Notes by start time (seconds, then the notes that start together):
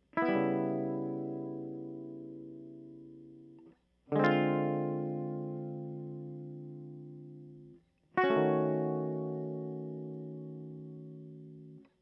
0.18 E4
0.23 B3
0.30 G3
0.37 C#3
4.13 D3 G#3
4.20 C4
4.24 F4
8.18 F#4
8.24 C#4
8.31 A3
8.38 D#3